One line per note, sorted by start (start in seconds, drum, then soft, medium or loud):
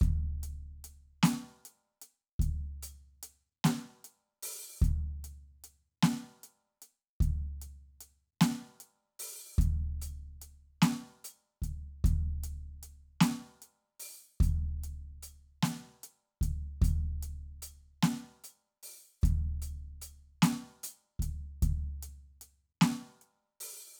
0.01 kick loud
0.01 closed hi-hat soft
0.01 hi-hat pedal soft
0.43 closed hi-hat medium
0.84 closed hi-hat medium
1.23 closed hi-hat loud
1.23 snare loud
1.65 closed hi-hat medium
2.02 closed hi-hat medium
2.39 kick loud
2.39 closed hi-hat medium
2.83 closed hi-hat medium
3.23 closed hi-hat medium
3.64 closed hi-hat medium
3.64 snare loud
3.66 snare medium
4.04 closed hi-hat medium
4.42 open hi-hat loud
4.79 kick loud
4.79 hi-hat pedal soft
4.84 closed hi-hat medium
5.24 closed hi-hat medium
5.64 closed hi-hat medium
6.03 snare loud
6.03 closed hi-hat medium
6.43 closed hi-hat medium
6.82 closed hi-hat medium
7.20 kick loud
7.20 closed hi-hat medium
7.62 closed hi-hat medium
8.01 closed hi-hat medium
8.41 closed hi-hat medium
8.41 snare loud
8.80 closed hi-hat medium
9.19 open hi-hat loud
9.56 kick loud
9.56 hi-hat pedal soft
9.61 closed hi-hat medium
10.02 closed hi-hat medium
10.42 closed hi-hat medium
10.82 snare loud
10.82 closed hi-hat medium
11.24 closed hi-hat medium
11.62 kick medium
11.62 closed hi-hat medium
12.04 kick loud
12.04 closed hi-hat medium
12.44 closed hi-hat medium
12.83 closed hi-hat medium
13.21 closed hi-hat medium
13.21 snare loud
13.62 closed hi-hat medium
14.00 open hi-hat medium
14.40 closed hi-hat medium
14.40 kick loud
14.40 hi-hat pedal soft
14.84 closed hi-hat medium
15.22 closed hi-hat medium
15.62 closed hi-hat medium
15.62 snare loud
16.03 closed hi-hat medium
16.41 kick medium
16.41 closed hi-hat medium
16.82 closed hi-hat medium
16.82 kick loud
17.23 closed hi-hat medium
17.62 closed hi-hat medium
18.03 snare loud
18.03 closed hi-hat medium
18.44 closed hi-hat medium
18.83 open hi-hat medium
19.21 kick loud
19.21 closed hi-hat medium
19.21 hi-hat pedal soft
19.62 closed hi-hat medium
20.02 closed hi-hat medium
20.42 closed hi-hat medium
20.42 snare loud
20.83 closed hi-hat loud
21.19 kick medium
21.19 closed hi-hat medium
21.62 kick loud
21.62 closed hi-hat medium
22.03 closed hi-hat medium
22.41 closed hi-hat medium
22.81 snare loud
22.81 closed hi-hat medium
23.21 closed hi-hat soft
23.60 open hi-hat medium